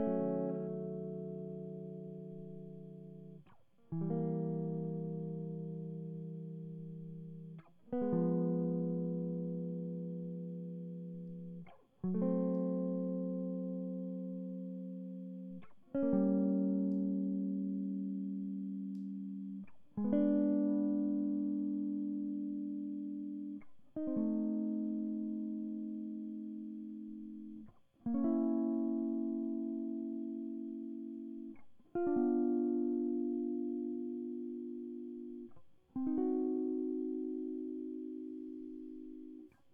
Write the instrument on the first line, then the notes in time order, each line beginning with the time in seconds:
electric guitar
0.00 A3
0.07 F#3
3.93 E3
4.02 G3
4.10 A#3
7.93 B3
8.02 G#3
8.13 F3
12.04 F#3
12.15 A3
12.22 C4
15.95 C#4
16.03 A#3
16.13 G3
19.98 G#3
20.05 B3
20.13 D4
23.97 D#4
24.07 C4
24.17 A3
28.06 A#3
28.14 C#4
28.24 E4
31.95 F4
32.07 D4
32.17 B3
35.96 C4
36.07 D#4
36.18 F#4